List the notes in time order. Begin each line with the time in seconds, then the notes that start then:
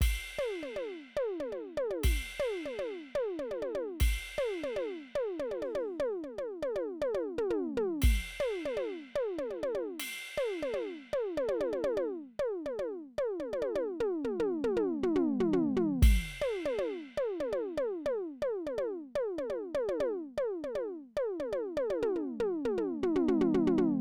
0.01 kick, ride
0.38 high tom
0.63 high tom
0.76 high tom
1.17 high tom
1.40 high tom
1.52 high tom
1.77 high tom
1.91 high tom
2.04 kick, ride
2.39 high tom
2.65 high tom
2.79 high tom
3.15 high tom
3.39 high tom
3.51 high tom
3.62 high tom
3.75 high tom
4.00 kick, ride
4.38 high tom
4.63 high tom
4.76 high tom
5.15 high tom
5.39 high tom
5.51 high tom
5.62 open hi-hat, high tom
5.75 high tom
6.00 high tom
6.24 high tom
6.38 high tom
6.62 high tom
6.76 high tom
7.02 high tom
7.14 high tom
7.38 mid tom
7.50 mid tom
7.77 mid tom
8.02 kick, ride
8.40 high tom
8.65 high tom
8.77 high tom
9.15 high tom
9.38 high tom
9.50 high tom
9.63 high tom
9.75 high tom
10.00 ride
10.38 high tom
10.62 high tom
10.74 high tom
11.13 high tom
11.37 high tom
11.49 high tom
11.61 high tom
11.73 high tom
11.84 high tom
11.97 high tom
12.39 high tom
12.66 high tom
12.79 high tom
13.18 high tom
13.40 high tom
13.53 high tom
13.62 high tom
13.75 high tom
14.00 mid tom
14.24 mid tom
14.40 mid tom
14.64 mid tom
14.77 mid tom
15.03 floor tom
15.15 floor tom
15.40 floor tom
15.53 floor tom
15.76 floor tom
16.02 kick, ride
16.41 high tom
16.66 high tom
16.79 high tom
17.17 high tom
17.40 high tom
17.53 high tom
17.77 high tom
18.06 high tom
18.42 high tom
18.67 high tom
18.78 high tom
19.15 high tom
19.38 high tom
19.50 high tom
19.75 high tom
19.89 high tom
20.00 high tom
20.38 high tom
20.64 high tom
20.75 high tom
21.17 high tom
21.40 high tom
21.53 high tom
21.77 high tom
21.90 high tom
22.02 mid tom
22.16 mid tom
22.40 mid tom
22.65 mid tom
22.78 mid tom
23.03 floor tom
23.15 floor tom
23.28 floor tom
23.41 floor tom
23.54 floor tom
23.67 floor tom
23.78 floor tom